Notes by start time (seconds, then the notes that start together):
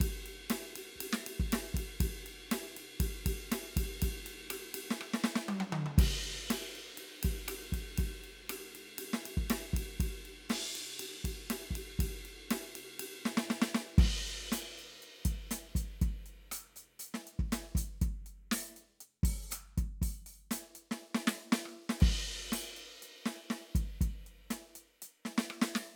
0.01 kick, ride
0.27 ride
0.51 snare, ride
0.76 ride
0.96 kick
1.01 ride
1.13 snare
1.27 ride
1.40 kick
1.53 snare, ride
1.75 kick, ride
2.01 kick, ride
2.06 kick
2.27 ride
2.52 snare, ride
2.77 ride
3.01 kick, ride
3.27 kick, ride
3.52 snare, ride
3.77 kick, ride
4.03 kick, ride
4.27 ride
4.51 cross-stick, ride
4.75 ride
4.91 snare
5.02 cross-stick
5.14 snare
5.24 snare
5.36 snare
5.49 high tom
5.61 high tom
5.73 mid tom
5.87 mid tom
5.99 kick, ride, crash
6.25 ride
6.51 snare, ride
6.76 ride
6.98 ride
7.24 kick, ride
7.49 cross-stick, ride
7.73 kick, ride
7.98 kick, ride
8.24 ride
8.50 cross-stick, ride
8.76 ride
8.99 ride
9.14 snare
9.26 ride
9.38 kick
9.51 snare, ride
9.74 kick, ride
10.00 kick, ride
10.26 ride
10.50 snare, ride
10.76 ride
11.00 ride
11.25 kick, ride
11.51 snare, ride
11.71 kick
11.76 ride
12.00 kick, ride
12.04 kick
12.26 ride
12.51 snare, ride
12.76 ride
13.00 ride
13.26 snare
13.38 snare
13.51 snare
13.62 snare
13.75 snare
13.99 kick, crash
14.27 open hi-hat
14.52 open hi-hat, snare
14.78 open hi-hat
15.03 closed hi-hat
15.26 kick, closed hi-hat
15.51 closed hi-hat, snare
15.76 closed hi-hat, kick
16.02 kick, closed hi-hat
16.26 open hi-hat
16.52 open hi-hat, cross-stick
16.77 open hi-hat
17.00 open hi-hat
17.15 snare
17.27 open hi-hat
17.40 kick
17.53 closed hi-hat, snare
17.61 open hi-hat
17.76 closed hi-hat, kick
18.02 kick, closed hi-hat
18.27 open hi-hat
18.52 open hi-hat, snare
18.60 open hi-hat
18.77 open hi-hat
19.01 closed hi-hat
19.24 kick, open hi-hat
19.51 cross-stick, closed hi-hat, hi-hat pedal
19.78 kick, closed hi-hat
20.02 kick, open hi-hat
20.27 open hi-hat
20.52 open hi-hat, snare
20.76 open hi-hat
20.92 snare
21.15 snare
21.28 snare
21.53 snare
21.66 cross-stick
21.90 snare
22.01 kick, crash
22.53 snare, open hi-hat
22.77 open hi-hat
23.03 open hi-hat
23.26 snare
23.51 snare
23.76 kick, closed hi-hat
24.02 kick, closed hi-hat
24.27 open hi-hat
24.51 snare, open hi-hat
24.76 open hi-hat
25.03 open hi-hat
25.26 snare
25.38 snare
25.51 cross-stick
25.62 snare
25.76 snare